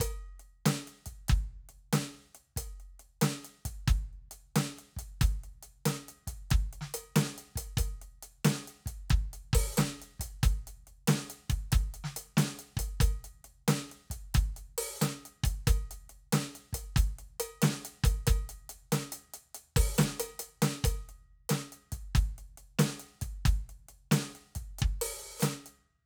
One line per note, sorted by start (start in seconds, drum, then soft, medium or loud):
0.00 kick medium
0.00 closed hi-hat loud
0.26 closed hi-hat soft
0.39 closed hi-hat soft
0.65 snare loud
0.65 closed hi-hat loud
0.87 closed hi-hat soft
1.06 kick medium
1.06 closed hi-hat medium
1.28 kick loud
1.28 closed hi-hat medium
1.69 closed hi-hat soft
1.93 snare loud
1.93 closed hi-hat loud
2.35 closed hi-hat soft
2.56 kick medium
2.56 closed hi-hat loud
2.80 closed hi-hat soft
2.99 closed hi-hat soft
3.21 snare loud
3.21 closed hi-hat loud
3.44 closed hi-hat medium
3.65 kick medium
3.65 closed hi-hat medium
3.88 kick loud
3.88 closed hi-hat medium
4.13 closed hi-hat soft
4.31 closed hi-hat medium
4.56 snare loud
4.56 closed hi-hat loud
4.78 closed hi-hat soft
4.96 kick medium
4.96 closed hi-hat medium
5.21 kick loud
5.21 closed hi-hat loud
5.43 closed hi-hat soft
5.63 closed hi-hat medium
5.85 snare loud
5.85 closed hi-hat loud
6.08 closed hi-hat medium
6.27 kick medium
6.27 closed hi-hat medium
6.50 kick loud
6.50 closed hi-hat medium
6.73 closed hi-hat soft
6.81 snare medium
6.94 closed hi-hat loud
7.16 snare loud
7.16 closed hi-hat loud
7.38 closed hi-hat medium
7.56 kick medium
7.56 closed hi-hat loud
7.77 kick loud
7.77 closed hi-hat loud
8.01 closed hi-hat soft
8.22 closed hi-hat medium
8.44 snare loud
8.44 closed hi-hat loud
8.67 closed hi-hat medium
8.86 kick medium
8.86 closed hi-hat medium
9.10 kick loud
9.10 closed hi-hat medium
9.33 closed hi-hat medium
9.53 kick loud
9.53 open hi-hat loud
9.77 snare loud
9.77 hi-hat pedal loud
9.77 open hi-hat loud
10.01 closed hi-hat medium
10.19 kick medium
10.19 closed hi-hat medium
10.43 kick loud
10.43 closed hi-hat loud
10.67 closed hi-hat medium
10.87 closed hi-hat soft
11.07 snare loud
11.07 closed hi-hat loud
11.30 closed hi-hat medium
11.50 kick loud
11.50 closed hi-hat medium
11.72 kick loud
11.72 closed hi-hat loud
11.94 closed hi-hat medium
12.04 snare medium
12.16 closed hi-hat loud
12.37 snare loud
12.37 closed hi-hat loud
12.59 closed hi-hat medium
12.77 kick loud
12.77 closed hi-hat loud
13.00 kick loud
13.00 closed hi-hat loud
13.24 closed hi-hat medium
13.44 closed hi-hat soft
13.68 snare loud
13.68 closed hi-hat loud
13.91 closed hi-hat soft
14.10 kick medium
14.10 closed hi-hat medium
14.34 kick loud
14.34 closed hi-hat loud
14.56 closed hi-hat medium
14.78 open hi-hat loud
15.01 snare loud
15.01 hi-hat pedal loud
15.01 open hi-hat loud
15.25 closed hi-hat medium
15.43 kick loud
15.43 closed hi-hat medium
15.67 kick loud
15.67 closed hi-hat loud
15.91 closed hi-hat medium
16.09 closed hi-hat soft
16.32 snare loud
16.32 closed hi-hat loud
16.55 closed hi-hat medium
16.73 kick medium
16.73 closed hi-hat loud
16.96 kick loud
16.96 closed hi-hat loud
17.18 closed hi-hat soft
17.40 closed hi-hat loud
17.62 snare loud
17.62 closed hi-hat loud
17.85 closed hi-hat medium
18.04 kick loud
18.04 closed hi-hat loud
18.27 kick loud
18.27 closed hi-hat loud
18.49 closed hi-hat medium
18.69 closed hi-hat medium
18.92 snare loud
18.92 closed hi-hat loud
19.12 closed hi-hat medium
19.34 closed hi-hat medium
19.54 closed hi-hat medium
19.76 kick loud
19.76 open hi-hat loud
19.98 snare loud
19.98 hi-hat pedal loud
19.98 open hi-hat loud
20.20 closed hi-hat loud
20.39 closed hi-hat loud
20.62 snare loud
20.62 closed hi-hat loud
20.84 kick loud
20.84 closed hi-hat loud
21.09 closed hi-hat soft
21.49 snare loud
21.49 closed hi-hat loud
21.72 closed hi-hat medium
21.92 kick medium
21.92 closed hi-hat medium
22.15 kick loud
22.15 closed hi-hat medium
22.38 closed hi-hat soft
22.57 closed hi-hat soft
22.79 snare loud
22.79 closed hi-hat loud
22.99 closed hi-hat medium
23.21 kick medium
23.21 closed hi-hat medium
23.45 kick loud
23.45 closed hi-hat medium
23.69 closed hi-hat soft
23.88 closed hi-hat soft
24.11 snare loud
24.11 closed hi-hat loud
24.35 closed hi-hat soft
24.55 kick medium
24.55 closed hi-hat medium
24.78 kick loud
24.78 closed hi-hat medium
25.01 open hi-hat loud
25.40 snare loud
25.40 closed hi-hat loud
25.40 hi-hat pedal loud
25.66 closed hi-hat medium